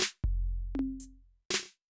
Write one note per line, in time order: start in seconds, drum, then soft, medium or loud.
0.00 snare loud
0.00 hi-hat pedal medium
0.24 kick medium
0.75 high tom loud
0.79 high tom loud
1.00 hi-hat pedal loud
1.50 snare loud
1.54 snare loud
1.59 snare medium
1.63 snare soft
1.65 snare soft